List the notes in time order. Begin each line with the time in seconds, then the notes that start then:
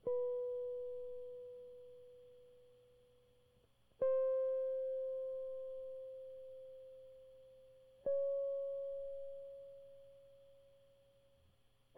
0.07 B4
4.02 C5
8.07 C#5